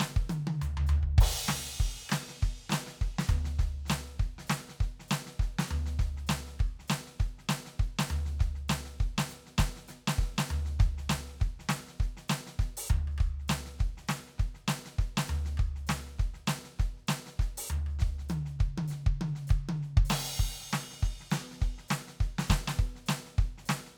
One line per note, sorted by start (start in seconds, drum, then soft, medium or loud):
0.01 snare loud
0.17 kick medium
0.30 hi-hat pedal medium
0.30 high tom loud
0.48 high tom loud
0.62 floor tom loud
0.62 hi-hat pedal medium
0.78 floor tom loud
0.88 floor tom loud
0.88 hi-hat pedal medium
1.04 kick soft
1.19 kick loud
1.19 crash loud
1.49 snare loud
1.49 hi-hat pedal medium
1.66 cross-stick soft
1.66 snare soft
1.81 kick medium
1.81 snare soft
2.10 cross-stick medium
2.10 snare loud
2.10 hi-hat pedal medium
2.29 snare soft
2.43 kick medium
2.43 snare soft
2.71 snare loud
2.71 hi-hat pedal medium
2.73 snare loud
2.87 snare medium
3.02 kick medium
3.02 snare soft
3.20 snare loud
3.29 kick medium
3.29 floor tom loud
3.29 hi-hat pedal medium
3.46 snare medium
3.60 kick medium
3.60 snare medium
3.87 snare soft
3.87 hi-hat pedal medium
3.91 snare loud
4.02 snare soft
4.06 snare soft
4.20 kick medium
4.20 snare soft
4.39 snare medium
4.48 snare loud
4.48 hi-hat pedal medium
4.70 snare soft
4.81 kick medium
4.81 snare soft
5.00 snare soft
5.09 snare loud
5.09 hi-hat pedal medium
5.27 snare medium
5.40 kick medium
5.40 snare soft
5.60 snare loud
5.68 floor tom loud
5.68 hi-hat pedal medium
5.87 snare soft
6.00 kick medium
6.00 snare medium
6.18 snare soft
6.28 snare loud
6.28 hi-hat pedal medium
6.48 snare soft
6.60 kick medium
6.60 cross-stick soft
6.80 snare soft
6.89 snare loud
6.89 hi-hat pedal medium
7.07 snare soft
7.21 kick medium
7.21 snare soft
7.39 snare soft
7.50 snare loud
7.50 hi-hat pedal medium
7.67 snare soft
7.80 kick medium
7.80 snare soft
8.00 snare loud
8.09 floor tom loud
8.09 hi-hat pedal medium
8.26 snare soft
8.40 kick medium
8.40 snare medium
8.56 snare soft
8.69 snare loud
8.69 hi-hat pedal medium
8.85 snare soft
9.01 kick medium
9.01 snare soft
9.19 snare loud
9.30 snare soft
9.30 hi-hat pedal medium
9.47 snare soft
9.59 kick medium
9.59 snare loud
9.77 snare soft
9.89 snare soft
9.89 hi-hat pedal medium
10.08 snare loud
10.19 kick medium
10.19 snare soft
10.39 snare loud
10.49 floor tom loud
10.49 hi-hat pedal medium
10.66 snare soft
10.80 kick loud
10.80 snare medium
10.99 snare soft
11.04 kick soft
11.10 snare loud
11.10 hi-hat pedal medium
11.15 kick soft
11.30 snare soft
11.41 kick medium
11.41 snare soft
11.60 snare soft
11.70 snare loud
11.70 hi-hat pedal medium
11.89 snare soft
12.01 kick medium
12.01 snare soft
12.18 snare soft
12.29 snare loud
12.29 hi-hat pedal medium
12.48 snare medium
12.60 kick medium
12.60 snare medium
12.78 open hi-hat loud
12.89 kick medium
12.89 floor tom loud
12.89 hi-hat pedal medium
13.08 cross-stick soft
13.19 kick medium
13.19 cross-stick medium
13.40 snare soft
13.49 snare loud
13.49 hi-hat pedal medium
13.66 snare soft
13.80 kick medium
13.80 snare soft
13.98 snare soft
14.09 snare loud
14.09 hi-hat pedal medium
14.28 snare soft
14.39 kick medium
14.39 snare soft
14.55 snare soft
14.69 snare loud
14.69 hi-hat pedal medium
14.86 snare medium
14.99 kick medium
14.99 snare soft
15.18 snare loud
15.28 floor tom loud
15.28 hi-hat pedal medium
15.46 snare soft
15.58 kick medium
15.58 cross-stick medium
15.76 snare soft
15.88 snare loud
15.88 hi-hat pedal medium
16.08 snare soft
16.20 kick medium
16.20 snare soft
16.35 snare soft
16.48 snare loud
16.48 hi-hat pedal medium
16.65 snare soft
16.80 kick medium
16.80 snare soft
16.98 snare soft
17.08 snare loud
17.08 hi-hat pedal medium
17.27 snare soft
17.40 kick medium
17.40 snare medium
17.58 open hi-hat loud
17.70 floor tom loud
17.70 hi-hat pedal medium
17.87 cross-stick soft
18.00 kick medium
18.00 snare medium
18.20 snare soft
18.30 hi-hat pedal medium
18.30 high tom loud
18.46 snare soft
18.60 kick medium
18.60 snare soft
18.79 high tom loud
18.89 snare soft
18.89 hi-hat pedal medium
19.07 kick medium
19.22 high tom loud
19.36 snare soft
19.48 kick loud
19.48 cross-stick soft
19.48 hi-hat pedal medium
19.70 high tom loud
19.83 snare soft
19.98 kick loud
20.06 hi-hat pedal medium
20.11 snare loud
20.11 crash loud
20.40 kick medium
20.60 snare soft
20.71 snare loud
20.71 hi-hat pedal medium
20.92 snare soft
21.03 kick medium
21.03 snare soft
21.21 snare soft
21.32 snare loud
21.32 hi-hat pedal medium
21.52 snare soft
21.62 kick medium
21.62 snare soft
21.79 snare soft
21.89 snare loud
21.89 hi-hat pedal medium
22.09 snare soft
22.21 kick medium
22.21 snare soft
22.39 snare loud
22.48 kick medium
22.48 snare loud
22.48 hi-hat pedal medium
22.68 snare loud
22.80 kick medium
22.80 snare soft
22.97 snare soft
23.07 snare loud
23.07 hi-hat pedal medium
23.27 snare soft
23.39 kick medium
23.39 snare soft
23.59 snare soft
23.66 snare loud
23.66 hi-hat pedal medium
23.87 snare soft